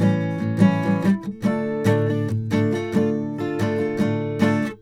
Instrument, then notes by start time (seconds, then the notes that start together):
acoustic guitar
0.00 A2 E3 G3
0.16 C#4 E4
0.40 A2 E3
0.59 E3 G3
0.63 C#4 E4
0.85 E3 G3
1.04 E3 G3
1.24 C#3 A3
1.44 D3 A3 D4 F4
1.48 A4
1.86 A2 D3 A3 D4 F4
2.04 A3
2.12 D4
2.30 A2 D3 A3
2.52 D3 A3 D4 F4
2.57 A4
2.73 A3 D4 F4
2.94 A2 D3 A3 D4
2.98 F4 A4
3.40 D4 F4 A4
3.60 D3 A3 D4 F4
3.78 D4 F4
3.83 A3
3.98 A2 D3 A3 D4
4.03 F4
4.41 D3 A3 D4 F4 A4